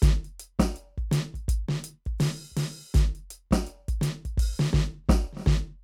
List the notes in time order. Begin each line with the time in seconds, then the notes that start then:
0.01 closed hi-hat, kick, snare, hi-hat pedal
0.25 closed hi-hat
0.40 closed hi-hat
0.59 kick, snare, closed hi-hat
0.76 closed hi-hat
0.98 kick, closed hi-hat
1.12 closed hi-hat, snare
1.34 kick, closed hi-hat
1.48 closed hi-hat, kick
1.69 snare
1.84 closed hi-hat
2.05 kick, closed hi-hat
2.19 open hi-hat, snare, hi-hat pedal
2.52 kick
2.57 open hi-hat, snare
2.94 open hi-hat, kick, snare, hi-hat pedal
3.15 closed hi-hat
3.30 closed hi-hat
3.51 kick, snare, closed hi-hat
3.67 closed hi-hat
3.88 kick, closed hi-hat
4.01 closed hi-hat, snare
4.25 kick, closed hi-hat
4.38 open hi-hat, kick
4.59 snare
4.73 kick, snare
5.04 snare
5.09 kick, snare
5.33 snare
5.37 snare
5.40 snare
5.42 snare
5.46 kick, snare